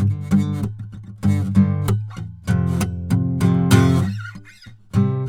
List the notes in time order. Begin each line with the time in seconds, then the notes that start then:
0.00 G2
0.12 D3
0.32 G2 D3
1.24 G2 D3 G3
1.56 G2 D3 G3
2.49 F2 C3 F3
2.73 C3
2.82 F2
3.11 F2 C3 F3
3.42 F2 C3 F3
3.72 F2 C3 F3
4.96 C3 G3 C4